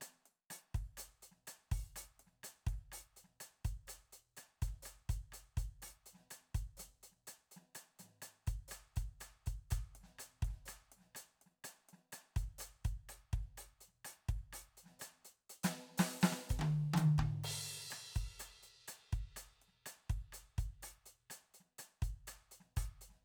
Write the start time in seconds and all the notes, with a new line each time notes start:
0.01 closed hi-hat, cross-stick
0.26 closed hi-hat
0.50 open hi-hat, cross-stick, snare
0.74 kick, snare, open hi-hat
0.97 closed hi-hat, cross-stick, hi-hat pedal
1.22 closed hi-hat
1.31 snare
1.47 closed hi-hat, cross-stick
1.71 open hi-hat, kick
1.95 open hi-hat, cross-stick, snare, hi-hat pedal
2.19 closed hi-hat
2.26 snare
2.43 closed hi-hat, cross-stick
2.67 kick, closed hi-hat
2.72 snare
2.92 open hi-hat, cross-stick
3.16 closed hi-hat
3.24 snare
3.40 closed hi-hat, cross-stick
3.65 closed hi-hat, kick
3.87 closed hi-hat, cross-stick, hi-hat pedal
4.12 closed hi-hat
4.37 closed hi-hat, cross-stick
4.62 closed hi-hat, kick
4.67 snare
4.82 closed hi-hat, cross-stick, hi-hat pedal
5.09 closed hi-hat, kick
5.32 closed hi-hat, cross-stick
5.57 closed hi-hat, kick
5.82 open hi-hat, cross-stick, snare
6.06 closed hi-hat
6.13 snare
6.14 snare
6.30 closed hi-hat, cross-stick
6.54 closed hi-hat, kick
6.77 closed hi-hat, snare, hi-hat pedal
7.03 closed hi-hat
7.11 snare
7.27 closed hi-hat, cross-stick
7.51 closed hi-hat
7.56 snare
7.75 closed hi-hat, cross-stick
7.99 closed hi-hat, snare, mid tom
8.04 snare
8.22 closed hi-hat, cross-stick
8.47 closed hi-hat, kick
8.68 closed hi-hat, cross-stick, snare, hi-hat pedal
8.96 closed hi-hat, kick
9.00 snare
9.20 closed hi-hat, cross-stick, hi-hat pedal
9.46 closed hi-hat, kick
9.70 open hi-hat, kick, cross-stick
9.77 kick
9.95 closed hi-hat
10.00 snare
10.03 snare
10.18 closed hi-hat, cross-stick, snare
10.42 kick, closed hi-hat
10.47 snare
10.49 snare
10.65 closed hi-hat, cross-stick, snare, hi-hat pedal
10.92 closed hi-hat
10.96 snare
11.00 snare
11.15 closed hi-hat, cross-stick
11.41 closed hi-hat
11.46 snare
11.64 closed hi-hat, cross-stick
11.89 closed hi-hat
11.93 snare
12.12 closed hi-hat, cross-stick
12.36 open hi-hat, kick
12.42 snare
12.58 closed hi-hat, cross-stick, hi-hat pedal
12.84 closed hi-hat, kick
13.09 open hi-hat, cross-stick, hi-hat pedal
13.33 kick, snare, closed hi-hat
13.37 snare
13.57 open hi-hat, cross-stick, hi-hat pedal
13.81 closed hi-hat
13.88 snare
14.05 open hi-hat, cross-stick, hi-hat pedal
14.29 kick, closed hi-hat
14.37 snare
14.52 open hi-hat, cross-stick, snare, hi-hat pedal
14.77 closed hi-hat
14.83 snare
14.85 snare
14.99 closed hi-hat, cross-stick, hi-hat pedal
15.25 closed hi-hat
15.49 closed hi-hat
15.63 closed hi-hat, snare
15.97 open hi-hat, snare
16.21 open hi-hat, snare
16.32 snare
16.49 kick, hi-hat pedal, crash
16.59 high tom
16.61 high tom
16.64 high tom
16.94 hi-hat pedal, high tom
16.97 high tom
17.18 kick, mid tom
17.44 crash
17.90 closed hi-hat, cross-stick
18.15 closed hi-hat, kick
18.39 closed hi-hat, cross-stick
18.63 closed hi-hat
18.88 closed hi-hat, cross-stick
19.12 closed hi-hat, kick
19.36 closed hi-hat, cross-stick, snare
19.61 closed hi-hat
19.68 snare
19.86 closed hi-hat, cross-stick
20.09 kick, closed hi-hat
20.32 closed hi-hat, cross-stick, hi-hat pedal
20.58 closed hi-hat, kick
20.82 open hi-hat, cross-stick
21.06 closed hi-hat
21.30 closed hi-hat, cross-stick, snare
21.54 closed hi-hat
21.60 snare
21.78 closed hi-hat, cross-stick
22.02 closed hi-hat, kick
22.27 closed hi-hat, cross-stick
22.51 closed hi-hat
22.60 snare
22.76 open hi-hat, kick, cross-stick
23.01 closed hi-hat
23.08 snare